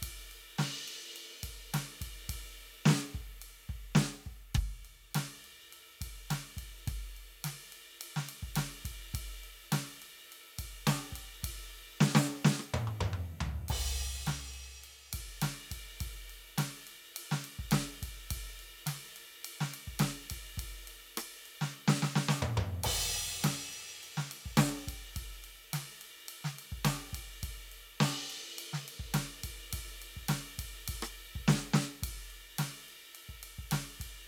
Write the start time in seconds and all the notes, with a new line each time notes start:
0.02 kick, ride
0.31 ride
0.58 snare, ride
0.88 ride
1.16 ride
1.43 kick, ride
1.74 snare, ride
2.01 kick, ride
2.29 kick, ride
2.85 snare
2.89 snare
3.14 kick
3.42 ride
3.69 kick
3.95 snare
3.99 cross-stick
4.26 kick
4.54 kick, ride
4.85 ride
5.14 snare, ride
5.44 ride
5.73 ride
6.01 kick, ride
6.30 snare, ride
6.57 kick, ride
6.87 kick, ride
7.16 ride
7.44 snare, ride
7.72 ride
8.01 ride
8.16 snare
8.29 ride
8.42 kick
8.56 snare, ride
8.85 kick, ride
9.14 kick, ride
9.43 ride
9.72 snare, ride
10.02 ride
10.32 ride
10.58 kick, ride
10.87 snare, ride
11.12 kick, ride
11.43 kick, ride
12.00 snare
12.15 snare
12.44 snare
12.59 cross-stick
12.74 high tom
12.87 high tom
13.00 mid tom
13.13 mid tom
13.40 floor tom
13.68 kick, ride, crash
13.96 ride
14.26 snare, ride
14.54 ride
14.84 ride
15.13 kick, ride
15.42 snare, ride
15.71 kick, ride
16.00 kick, ride
16.29 ride
16.58 snare, ride
16.87 ride
17.16 ride
17.31 snare
17.44 ride
17.59 kick
17.71 snare, ride
18.02 kick, ride
18.30 kick, ride
18.59 ride
18.86 snare, ride
19.16 ride
19.44 ride
19.60 snare
19.74 ride
19.87 kick
19.99 snare, ride
20.30 kick, ride
20.57 kick, ride
20.87 ride
21.17 cross-stick, ride
21.45 ride
21.61 snare
21.88 snare
22.02 snare
22.15 snare
22.28 snare
22.42 high tom
22.57 mid tom
22.83 kick, ride, crash
23.13 ride
23.44 snare, ride
23.73 ride
24.03 ride
24.17 snare
24.31 ride
24.45 kick
24.57 snare, ride
24.87 kick, ride
25.16 kick, ride
25.44 ride
25.73 snare, ride
26.01 ride
26.28 ride
26.44 snare
26.58 ride
26.72 kick
26.84 snare, ride
27.13 kick, ride
27.43 kick, ride
27.72 ride
28.00 snare, ride
28.30 ride
28.58 ride
28.73 snare
28.88 ride
28.99 kick
29.14 snare, ride
29.43 kick, ride
29.73 kick, ride
30.02 ride
30.16 kick
30.28 snare, ride
30.58 kick, ride
30.88 kick, ride
31.02 cross-stick
31.35 kick
31.40 kick
31.48 snare
31.73 snare
32.03 kick, ride
32.30 ride
32.58 snare, ride
32.88 ride
33.15 ride
33.29 kick
33.43 ride
33.58 kick
33.71 snare, ride
34.00 kick, ride